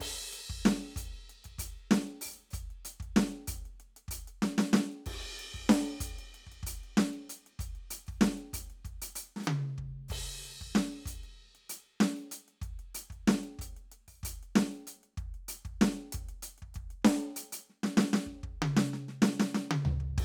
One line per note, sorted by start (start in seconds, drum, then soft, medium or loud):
0.01 kick soft
0.01 crash loud
0.14 closed hi-hat soft
0.33 closed hi-hat medium
0.50 kick medium
0.50 closed hi-hat soft
0.66 snare loud
0.83 closed hi-hat soft
0.97 closed hi-hat loud
0.97 kick medium
1.15 closed hi-hat soft
1.30 closed hi-hat medium
1.45 kick soft
1.45 closed hi-hat medium
1.59 closed hi-hat loud
1.59 kick soft
1.78 closed hi-hat soft
1.92 snare loud
2.08 closed hi-hat soft
2.22 open hi-hat loud
2.26 kick soft
2.40 open hi-hat soft
2.51 closed hi-hat medium
2.51 kick medium
2.51 hi-hat pedal medium
2.71 closed hi-hat soft
2.86 closed hi-hat loud
3.01 kick soft
3.01 closed hi-hat soft
3.17 snare loud
3.32 closed hi-hat soft
3.48 closed hi-hat loud
3.48 kick medium
3.66 closed hi-hat soft
3.81 closed hi-hat soft
3.97 closed hi-hat medium
4.09 closed hi-hat loud
4.09 kick soft
4.28 closed hi-hat medium
4.43 snare loud
4.59 snare loud
4.74 snare loud
4.92 closed hi-hat soft
5.07 kick medium
5.07 ride loud
5.23 open hi-hat soft
5.40 closed hi-hat medium
5.55 kick soft
5.55 closed hi-hat soft
5.70 snare loud
5.86 closed hi-hat soft
6.01 closed hi-hat loud
6.01 kick medium
6.19 closed hi-hat soft
6.35 closed hi-hat soft
6.47 kick soft
6.53 open hi-hat soft
6.64 closed hi-hat loud
6.64 kick medium
6.84 closed hi-hat soft
6.98 snare loud
7.14 closed hi-hat soft
7.30 closed hi-hat loud
7.47 closed hi-hat soft
7.60 closed hi-hat medium
7.60 kick medium
7.76 open hi-hat soft
7.91 closed hi-hat loud
8.08 kick soft
8.08 open hi-hat soft
8.22 snare loud
8.38 closed hi-hat soft
8.54 closed hi-hat loud
8.54 kick soft
8.71 closed hi-hat soft
8.86 kick soft
8.86 closed hi-hat medium
9.03 closed hi-hat loud
9.16 open hi-hat loud
9.37 snare soft
9.41 snare medium
9.44 snare soft
9.44 hi-hat pedal medium
9.47 snare soft
9.47 high tom loud
9.79 kick soft
10.09 kick medium
10.09 hi-hat pedal medium
10.09 crash loud
10.46 closed hi-hat soft
10.62 kick soft
10.62 closed hi-hat soft
10.76 snare loud
10.92 closed hi-hat soft
11.06 closed hi-hat loud
11.06 kick medium
11.24 closed hi-hat soft
11.56 closed hi-hat soft
11.70 closed hi-hat loud
11.87 closed hi-hat soft
12.01 snare loud
12.17 open hi-hat soft
12.32 closed hi-hat loud
12.49 closed hi-hat soft
12.62 kick medium
12.62 closed hi-hat medium
12.80 closed hi-hat soft
12.96 closed hi-hat loud
13.11 kick soft
13.11 closed hi-hat soft
13.28 snare loud
13.44 closed hi-hat soft
13.60 closed hi-hat medium
13.60 kick soft
13.77 closed hi-hat soft
13.93 closed hi-hat medium
14.09 kick soft
14.09 open hi-hat medium
14.24 closed hi-hat loud
14.24 kick medium
14.44 closed hi-hat soft
14.56 snare loud
14.72 open hi-hat soft
14.88 closed hi-hat medium
15.04 closed hi-hat soft
15.18 kick medium
15.18 closed hi-hat soft
15.35 closed hi-hat soft
15.49 closed hi-hat loud
15.66 kick soft
15.66 closed hi-hat soft
15.82 snare loud
15.96 closed hi-hat soft
16.13 kick medium
16.13 closed hi-hat loud
16.29 closed hi-hat soft
16.43 closed hi-hat loud
16.59 closed hi-hat soft
16.63 kick soft
16.75 kick soft
16.75 closed hi-hat medium
16.91 closed hi-hat soft
17.03 kick soft
17.03 snare loud
17.21 closed hi-hat soft
17.37 closed hi-hat loud
17.53 closed hi-hat loud
17.70 snare soft
17.84 snare medium
17.98 snare loud
18.14 snare loud
18.27 kick soft
18.44 kick medium
18.63 high tom loud
18.78 snare loud
18.94 snare soft
19.09 snare soft
19.23 snare loud
19.41 snare loud
19.55 snare medium
19.72 high tom loud
19.86 floor tom loud
20.01 kick soft
20.19 kick loud
20.19 ride loud